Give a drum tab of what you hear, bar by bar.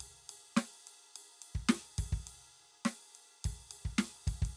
Ride  |x-x-x-x-x-x-x-x-|x---x-x-x-x-x-xx|
Snare |----o-------o---|----o-------o---|
Kick  |-----------o--oo|--------o--o--oo|